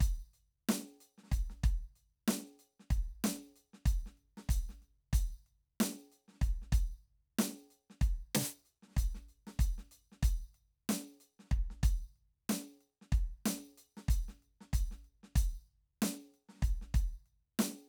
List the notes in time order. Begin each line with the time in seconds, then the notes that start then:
0.01 closed hi-hat, kick
0.34 closed hi-hat
0.69 closed hi-hat, snare
1.01 closed hi-hat
1.18 snare
1.24 snare
1.27 snare
1.32 closed hi-hat, kick
1.50 snare
1.64 closed hi-hat, kick
1.96 closed hi-hat
2.28 closed hi-hat, snare
2.60 closed hi-hat
2.80 snare
2.91 closed hi-hat, kick
3.24 closed hi-hat, snare
3.56 closed hi-hat
3.74 snare
3.86 closed hi-hat, kick
4.06 snare
4.18 closed hi-hat
4.38 snare
4.49 closed hi-hat, kick
4.70 snare
4.82 snare, closed hi-hat
5.13 closed hi-hat, kick
5.47 closed hi-hat
5.81 closed hi-hat, snare
6.12 closed hi-hat
6.28 snare
6.32 snare
6.34 snare
6.42 closed hi-hat, kick
6.62 snare
6.73 closed hi-hat, kick
7.39 closed hi-hat, snare
7.71 closed hi-hat
7.90 snare
8.02 closed hi-hat, kick
8.35 closed hi-hat, snare
8.66 closed hi-hat
8.83 snare
8.88 snare
8.91 snare
8.97 closed hi-hat, kick
9.15 snare
9.29 closed hi-hat
9.47 snare
9.60 closed hi-hat, kick
9.78 snare
9.92 closed hi-hat
10.12 snare
10.23 closed hi-hat, kick
10.55 closed hi-hat
10.89 closed hi-hat, snare
11.21 closed hi-hat
11.40 snare
11.44 snare
11.48 kick, snare
11.52 closed hi-hat
11.71 snare
11.84 closed hi-hat, kick
12.16 closed hi-hat
12.50 closed hi-hat, snare
12.81 closed hi-hat
13.02 snare
13.13 closed hi-hat, kick
13.19 ride
13.46 closed hi-hat, snare
13.78 closed hi-hat
13.97 snare
14.09 closed hi-hat, kick
14.29 snare
14.43 closed hi-hat
14.61 snare
14.74 closed hi-hat, kick
14.91 snare
15.05 closed hi-hat
15.24 snare
15.36 closed hi-hat, kick
16.02 closed hi-hat, snare
16.33 snare, closed hi-hat
16.49 snare
16.53 snare
16.57 snare
16.59 kick, snare
16.64 closed hi-hat
16.82 snare
16.95 closed hi-hat, kick
17.26 closed hi-hat
17.59 closed hi-hat, snare